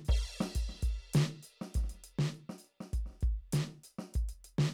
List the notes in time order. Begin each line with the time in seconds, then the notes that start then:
0.05 kick, hi-hat pedal, crash
0.41 snare
0.55 closed hi-hat, kick
0.70 snare
0.75 snare
0.83 closed hi-hat, kick, snare
1.14 closed hi-hat, snare
1.43 closed hi-hat, hi-hat pedal
1.62 snare
1.75 closed hi-hat, kick, snare
1.84 kick, snare
1.90 closed hi-hat, snare
1.95 snare
2.04 closed hi-hat
2.19 snare
2.35 closed hi-hat
2.50 snare
2.59 hi-hat pedal
2.65 closed hi-hat
2.81 snare
2.94 closed hi-hat, kick
3.06 snare
3.10 snare
3.13 snare
3.21 kick, closed hi-hat
3.32 kick
3.53 closed hi-hat, snare
3.68 snare
3.84 hi-hat pedal
3.99 snare
4.13 closed hi-hat, kick, snare
4.24 kick
4.29 closed hi-hat
4.45 closed hi-hat
4.59 snare